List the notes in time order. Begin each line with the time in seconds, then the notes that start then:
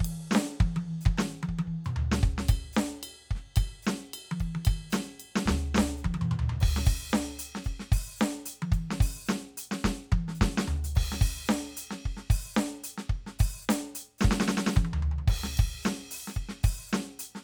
0.01 kick
0.05 ride
0.31 snare, hi-hat pedal
0.35 snare
0.61 kick, high tom
0.77 high tom
1.01 hi-hat pedal
1.06 kick, high tom
1.18 cross-stick, snare, hi-hat pedal
1.43 high tom
1.49 kick
1.59 high tom
1.68 kick
1.85 hi-hat pedal, mid tom
1.96 floor tom
2.12 snare
2.23 kick
2.38 snare
2.49 kick, ride bell
2.73 snare, hi-hat pedal
3.03 ride bell
3.31 kick
3.36 snare
3.56 kick, ride bell
3.83 hi-hat pedal
3.87 snare
4.14 ride bell
4.32 high tom
4.40 kick, ride
4.55 high tom
4.65 kick, ride bell
4.90 snare, hi-hat pedal, ride bell
5.20 ride bell
5.36 snare
5.46 kick, snare, floor tom
5.75 kick, snare
5.78 snare
5.98 hi-hat pedal
6.05 kick, high tom
6.15 high tom
6.22 mid tom
6.32 mid tom
6.39 floor tom
6.50 floor tom
6.61 kick, crash
6.77 snare
6.86 open hi-hat, kick
7.09 hi-hat pedal
7.14 snare
7.39 closed hi-hat
7.55 snare
7.64 closed hi-hat, kick
7.80 snare
7.92 open hi-hat, kick
8.18 snare, hi-hat pedal
8.46 closed hi-hat
8.62 high tom
8.72 kick, closed hi-hat
8.91 snare
9.01 open hi-hat, kick
9.27 snare, hi-hat pedal
9.58 closed hi-hat
9.72 snare
9.85 kick, snare
10.12 kick, high tom
10.29 snare
10.35 hi-hat pedal
10.41 kick, snare
10.58 snare
10.68 floor tom
10.85 closed hi-hat
10.96 kick, crash
11.12 snare
11.22 open hi-hat, kick
11.46 snare, hi-hat pedal
11.77 closed hi-hat
11.91 snare
12.03 kick, closed hi-hat
12.17 snare
12.30 open hi-hat, kick
12.54 snare, hi-hat pedal
12.84 closed hi-hat
12.98 snare
13.10 kick, closed hi-hat
13.27 snare
13.39 open hi-hat, kick
13.62 hi-hat pedal
13.69 closed hi-hat, snare
13.95 closed hi-hat
14.19 snare, hi-hat pedal
14.25 kick
14.40 snare
14.48 snare
14.58 snare
14.67 snare
14.73 kick, hi-hat pedal, high tom
14.85 high tom
14.94 floor tom
15.03 floor tom
15.12 floor tom
15.19 floor tom
15.28 kick, crash
15.44 snare
15.58 kick, ride
15.83 snare, hi-hat pedal
16.11 open hi-hat
16.28 snare, hi-hat pedal
16.34 closed hi-hat, kick
16.49 snare
16.64 open hi-hat, kick
16.89 hi-hat pedal
16.93 snare
17.20 closed hi-hat
17.35 snare